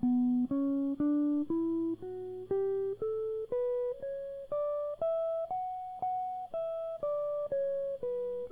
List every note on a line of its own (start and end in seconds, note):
0.03 0.49 B3
0.51 0.97 C#4
1.00 1.45 D4
1.50 1.97 E4
2.02 2.49 F#4
2.51 2.96 G4
3.03 3.48 A4
3.51 4.01 B4
4.04 4.49 C#5
4.52 4.99 D5
5.02 5.47 E5
5.51 6.02 F#5
6.02 6.49 F#5
6.54 6.99 E5
7.03 7.49 D5
7.52 7.98 C#5
8.03 8.49 B4